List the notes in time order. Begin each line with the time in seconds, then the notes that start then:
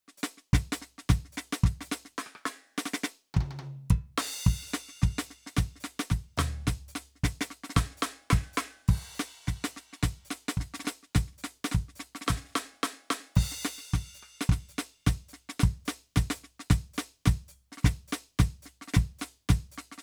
0.08 snare
0.17 hi-hat pedal
0.23 snare
0.37 snare
0.53 kick, snare
0.72 snare, hi-hat pedal
0.82 snare
0.98 snare
1.09 kick, snare
1.25 snare
1.32 hi-hat pedal
1.37 snare
1.53 snare
1.64 kick, snare
1.81 snare, hi-hat pedal
1.92 snare
2.05 snare
2.18 snare
2.26 cross-stick
2.35 cross-stick
2.46 snare
2.78 snare
2.86 snare
2.94 snare
3.04 snare
3.34 kick, high tom
3.41 high tom
3.51 high tom
3.59 high tom
3.90 kick, percussion
4.18 snare, crash
4.46 kick
4.63 snare
4.68 hi-hat pedal
4.74 snare
4.89 snare
5.02 kick, snare
5.18 snare, hi-hat pedal
5.30 snare
5.46 snare
5.57 kick, snare
5.76 snare
5.80 snare, hi-hat pedal
5.99 snare
6.10 kick, snare
6.37 snare, floor tom, hi-hat pedal
6.67 kick, snare
6.88 hi-hat pedal
6.95 snare
7.15 snare
7.24 kick, snare
7.41 snare, hi-hat pedal
7.50 snare
7.64 snare
7.70 snare
7.75 kick, snare
7.85 snare
7.91 snare
7.96 snare, hi-hat pedal
8.01 snare
8.02 snare
8.09 cross-stick
8.21 snare
8.30 kick, snare
8.39 cross-stick
8.43 snare
8.46 snare
8.53 hi-hat pedal
8.57 snare
8.66 snare
8.71 snare
8.76 snare
8.80 snare
8.88 kick, crash
9.14 hi-hat pedal
9.19 snare
9.47 kick, snare
9.64 snare, hi-hat pedal
9.76 snare
9.93 snare
10.03 kick, snare
10.25 hi-hat pedal
10.31 snare
10.48 snare
10.57 kick, snare
10.74 snare, hi-hat pedal
10.80 snare
10.85 snare
10.87 snare
11.03 snare
11.15 kick, snare
11.27 snare
11.32 snare
11.38 hi-hat pedal
11.44 snare
11.64 snare
11.71 kick, snare
11.88 snare
11.95 hi-hat pedal
12.00 snare
12.15 snare
12.21 snare
12.27 kick, snare
12.37 snare
12.41 snare
12.45 snare
12.48 snare
12.55 snare
12.64 snare
12.73 snare
12.83 snare
12.93 snare
12.99 snare
13.10 snare
13.20 snare
13.23 snare
13.25 snare
13.36 kick, crash
13.52 snare
13.61 snare, hi-hat pedal
13.78 snare
13.94 kick, snare
14.14 hi-hat pedal
14.23 cross-stick
14.41 snare
14.49 kick, snare
14.69 hi-hat pedal
14.78 snare
15.07 kick, snare
15.28 hi-hat pedal
15.33 snare
15.49 snare
15.60 kick, snare
15.85 snare, hi-hat pedal
16.16 kick, snare
16.30 snare
16.34 hi-hat pedal
16.44 snare
16.60 snare
16.70 kick, snare
16.94 hi-hat pedal
16.98 snare
17.26 kick, snare
17.48 hi-hat pedal
17.72 snare
17.77 snare
17.82 kick, snare
17.85 snare
18.08 hi-hat pedal
18.13 snare
18.39 kick, snare
18.62 snare, hi-hat pedal
18.81 snare
18.88 snare
18.94 kick, snare
19.19 snare, hi-hat pedal
19.49 kick, snare
19.72 hi-hat pedal
19.78 snare
19.92 snare
19.98 snare